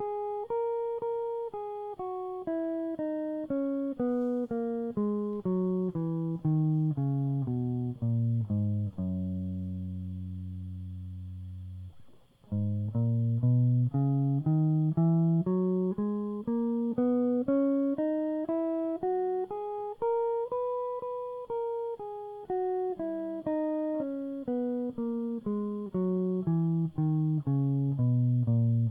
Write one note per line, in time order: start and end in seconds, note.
0.00 0.48 G#4
0.50 1.02 A#4
1.02 1.51 A#4
1.54 1.97 G#4
2.00 2.45 F#4
2.48 2.97 E4
2.99 3.48 D#4
3.51 3.96 C#4
4.00 4.48 B3
4.51 4.94 A#3
4.98 5.44 G#3
5.46 5.92 F#3
5.96 6.40 E3
6.46 6.95 D#3
6.99 7.47 C#3
7.49 7.95 B2
8.04 8.46 A#2
8.52 8.92 G#2
9.01 11.91 F#2
12.54 12.94 G#2
12.96 13.42 A#2
13.45 13.90 B2
13.95 14.44 C#3
14.47 14.94 D#3
14.98 15.45 E3
15.47 15.96 F#3
15.99 16.45 G#3
16.48 16.96 A#3
16.98 17.45 B3
17.49 17.97 C#4
17.99 18.49 D#4
18.49 18.99 E4
19.03 19.47 F#4
19.51 19.96 G#4
20.02 20.52 A#4
20.52 21.03 B4
21.03 21.49 B4
21.50 21.98 A#4
22.02 22.47 G#4
22.50 22.97 F#4
23.00 23.43 E4
23.47 24.04 D#4
24.07 24.47 C#4
24.48 24.93 B3
24.99 25.42 A#3
25.47 25.91 G#3
25.95 26.45 F#3
26.48 26.90 E3
26.99 27.42 D#3
27.48 27.97 C#3
28.01 28.46 B2
28.50 28.90 A#2